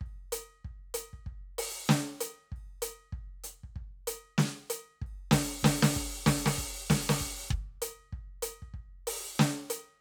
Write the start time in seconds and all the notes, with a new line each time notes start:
0.01 kick
0.06 crash
0.32 closed hi-hat
0.65 kick
0.94 closed hi-hat
1.13 kick
1.26 kick
1.58 open hi-hat
1.89 snare, hi-hat pedal
2.21 closed hi-hat
2.52 kick
2.56 crash
2.82 closed hi-hat
3.13 kick
3.44 closed hi-hat
3.64 kick
3.76 kick
4.07 open hi-hat
4.38 snare, hi-hat pedal
4.70 closed hi-hat
5.02 kick
5.07 crash
5.31 open hi-hat, kick, snare
5.63 open hi-hat, kick, snare
5.83 open hi-hat, snare
5.96 kick
6.26 open hi-hat, kick, snare
6.46 open hi-hat, snare
6.58 kick
6.90 open hi-hat, kick, snare
7.09 open hi-hat, snare
7.21 kick
7.48 kick, hi-hat pedal
7.82 closed hi-hat
8.13 kick
8.43 closed hi-hat
8.62 kick
8.74 kick
9.07 open hi-hat
9.38 snare, hi-hat pedal
9.70 closed hi-hat